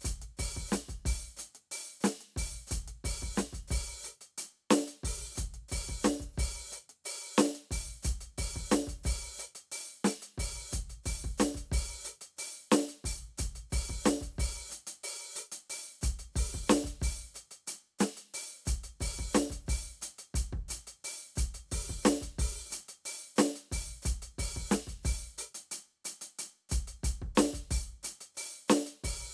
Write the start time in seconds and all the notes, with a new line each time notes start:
0.01 closed hi-hat, kick, hi-hat pedal
0.22 closed hi-hat
0.37 open hi-hat, kick, hi-hat pedal
0.57 kick
0.69 snare, hi-hat pedal
0.73 closed hi-hat
0.89 closed hi-hat, kick
1.05 open hi-hat, kick
1.37 closed hi-hat, hi-hat pedal
1.55 closed hi-hat
1.71 open hi-hat
2.01 closed hi-hat, snare, hi-hat pedal
2.21 closed hi-hat
2.36 open hi-hat, kick, hi-hat pedal
2.67 closed hi-hat, kick, hi-hat pedal
2.88 closed hi-hat
3.04 open hi-hat, kick
3.22 kick
3.36 closed hi-hat, snare, hi-hat pedal
3.53 closed hi-hat, kick
3.68 open hi-hat, kick, hi-hat pedal
4.04 open hi-hat, hi-hat pedal
4.21 closed hi-hat
4.38 closed hi-hat
4.70 closed hi-hat, snare, hi-hat pedal
4.87 closed hi-hat
5.03 open hi-hat, kick
5.35 closed hi-hat, kick, hi-hat pedal
5.54 closed hi-hat
5.68 open hi-hat, kick, hi-hat pedal
5.89 kick
6.03 closed hi-hat, snare, hi-hat pedal
6.20 kick, closed hi-hat
6.33 hi-hat pedal
6.38 open hi-hat, kick
6.72 open hi-hat, hi-hat pedal
6.89 closed hi-hat
7.04 open hi-hat, hi-hat pedal
7.38 closed hi-hat, snare, hi-hat pedal
7.55 closed hi-hat
7.71 open hi-hat, kick
8.03 closed hi-hat, kick, hi-hat pedal
8.21 closed hi-hat
8.38 open hi-hat, kick
8.56 kick
8.70 closed hi-hat, snare, hi-hat pedal
8.87 closed hi-hat, kick
9.03 open hi-hat, kick, hi-hat pedal
9.38 open hi-hat, hi-hat pedal
9.55 closed hi-hat
9.72 open hi-hat
10.04 open hi-hat, snare, hi-hat pedal
10.22 closed hi-hat
10.38 open hi-hat, kick
10.71 closed hi-hat, kick, hi-hat pedal
10.90 closed hi-hat
11.04 open hi-hat, kick, hi-hat pedal
11.24 kick
11.38 closed hi-hat, snare, hi-hat pedal
11.54 closed hi-hat, kick
11.72 open hi-hat, kick
12.04 open hi-hat, hi-hat pedal
12.21 closed hi-hat
12.37 open hi-hat, hi-hat pedal
12.71 closed hi-hat, snare, hi-hat pedal
12.88 closed hi-hat
13.04 open hi-hat, kick, hi-hat pedal
13.38 closed hi-hat, kick, hi-hat pedal
13.55 closed hi-hat
13.70 open hi-hat, kick, hi-hat pedal
13.89 kick
14.04 closed hi-hat, snare, hi-hat pedal
14.21 closed hi-hat, kick
14.35 kick, hi-hat pedal
14.39 open hi-hat
14.70 closed hi-hat, hi-hat pedal
14.87 closed hi-hat
15.03 open hi-hat
15.35 open hi-hat, hi-hat pedal
15.52 closed hi-hat
15.70 open hi-hat
16.01 closed hi-hat, kick, hi-hat pedal
16.19 closed hi-hat
16.33 open hi-hat, kick, hi-hat pedal
16.54 kick
16.67 closed hi-hat, snare, hi-hat pedal
16.84 closed hi-hat, kick
17.00 open hi-hat, kick, hi-hat pedal
17.34 closed hi-hat, hi-hat pedal
17.51 closed hi-hat
17.67 closed hi-hat, hi-hat pedal
17.99 closed hi-hat, snare, hi-hat pedal
18.17 closed hi-hat
18.34 open hi-hat, hi-hat pedal
18.65 closed hi-hat, kick, hi-hat pedal
18.83 closed hi-hat
19.00 open hi-hat, kick, hi-hat pedal
19.19 kick
19.33 closed hi-hat, snare, hi-hat pedal
19.50 closed hi-hat, kick
19.66 open hi-hat, kick, hi-hat pedal
20.01 closed hi-hat, hi-hat pedal
20.18 closed hi-hat
20.34 open hi-hat, kick
20.53 kick
20.68 closed hi-hat, hi-hat pedal
20.87 closed hi-hat
21.04 open hi-hat
21.36 closed hi-hat, kick, hi-hat pedal
21.54 closed hi-hat
21.68 open hi-hat, kick, hi-hat pedal
21.89 kick
22.03 closed hi-hat, snare, hi-hat pedal
22.21 closed hi-hat, kick
22.39 open hi-hat, kick
22.70 closed hi-hat, hi-hat pedal
22.88 closed hi-hat
23.04 open hi-hat, hi-hat pedal
23.36 closed hi-hat, snare, hi-hat pedal
23.55 closed hi-hat
23.70 open hi-hat, kick, hi-hat pedal
24.02 closed hi-hat, kick, hi-hat pedal
24.22 closed hi-hat
24.38 open hi-hat, kick
24.56 kick
24.70 closed hi-hat, snare, hi-hat pedal
24.87 closed hi-hat, kick
25.03 open hi-hat, kick, hi-hat pedal
25.38 open hi-hat, hi-hat pedal
25.54 closed hi-hat
25.71 closed hi-hat
26.05 closed hi-hat, hi-hat pedal
26.21 closed hi-hat
26.39 closed hi-hat
26.69 closed hi-hat, kick, hi-hat pedal
26.87 closed hi-hat
27.03 open hi-hat, kick
27.22 kick
27.35 closed hi-hat, snare, hi-hat pedal
27.53 closed hi-hat, kick
27.70 open hi-hat, kick, hi-hat pedal
28.03 closed hi-hat, hi-hat pedal
28.21 closed hi-hat
28.35 open hi-hat, hi-hat pedal
28.68 closed hi-hat, snare, hi-hat pedal
28.86 closed hi-hat
29.04 open hi-hat, kick